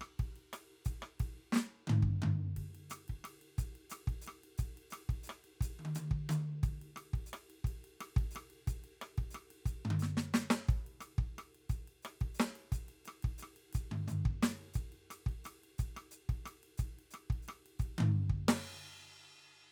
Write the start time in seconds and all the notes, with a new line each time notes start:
0.01 cross-stick
0.19 kick, ride
0.36 ride
0.53 cross-stick, hi-hat pedal, ride
0.85 kick, hi-hat pedal, ride
1.02 cross-stick
1.20 kick, hi-hat pedal, ride
1.52 snare
1.56 snare
1.87 floor tom, high tom
2.03 kick
2.22 floor tom, high tom
2.56 kick, ride
2.75 ride
2.90 cross-stick, hi-hat pedal, ride
3.08 kick, ride
3.24 cross-stick, ride
3.41 ride
3.58 kick, hi-hat pedal, ride
3.75 ride
3.90 cross-stick, hi-hat pedal, ride
4.07 kick, ride
4.22 hi-hat pedal
4.27 cross-stick, ride
4.44 ride
4.58 kick, hi-hat pedal, ride
4.77 ride
4.90 cross-stick, hi-hat pedal, ride
5.09 kick, ride
5.23 hi-hat pedal
5.28 cross-stick, ride
5.44 ride
5.61 kick, hi-hat pedal, ride
5.79 high tom
5.85 high tom
5.95 hi-hat pedal, high tom
6.11 kick
6.29 hi-hat pedal, high tom
6.63 kick, hi-hat pedal, ride
6.82 ride
6.96 cross-stick, ride
7.13 kick, ride
7.26 hi-hat pedal
7.33 cross-stick, ride
7.50 ride
7.64 kick, hi-hat pedal, ride
7.84 ride
8.01 cross-stick, ride
8.16 kick, ride
8.31 hi-hat pedal
8.35 cross-stick, ride
8.50 ride
8.67 kick, hi-hat pedal, ride
8.84 ride
9.01 cross-stick, ride
9.18 kick, ride
9.31 hi-hat pedal
9.35 cross-stick, ride
9.51 ride
9.66 kick, hi-hat pedal, ride
9.85 floor tom
9.90 high tom
9.99 snare, hi-hat pedal
10.17 snare
10.33 snare, hi-hat pedal
10.50 snare
10.67 kick, hi-hat pedal, ride
10.87 ride
11.00 cross-stick, hi-hat pedal, ride
11.18 kick
11.38 cross-stick, ride
11.55 ride
11.69 kick, hi-hat pedal, ride
11.88 ride
12.02 cross-stick, hi-hat pedal, ride
12.21 kick, ride
12.34 hi-hat pedal
12.39 snare, ride
12.56 ride
12.72 kick, hi-hat pedal, ride
12.88 ride
13.05 cross-stick, hi-hat pedal, ride
13.23 kick, ride
13.38 hi-hat pedal, ride
13.43 cross-stick
13.56 ride
13.73 kick, hi-hat pedal, ride
13.91 floor tom, high tom
14.08 floor tom, hi-hat pedal, high tom
14.25 kick
14.43 snare, ride
14.74 kick, hi-hat pedal, ride
14.92 ride
15.10 cross-stick, hi-hat pedal, ride
15.26 kick, ride
15.44 cross-stick, hi-hat pedal, ride
15.64 ride
15.78 kick, hi-hat pedal, ride
15.97 cross-stick, ride
16.11 hi-hat pedal, ride
16.29 kick, ride
16.45 cross-stick, hi-hat pedal, ride
16.63 ride
16.78 kick, hi-hat pedal, ride
16.99 ride
17.11 cross-stick, hi-hat pedal, ride
17.30 kick, ride
17.42 hi-hat pedal
17.48 cross-stick, ride
17.66 ride
17.79 kick, hi-hat pedal, ride
17.98 floor tom, high tom
18.30 kick
18.48 snare, crash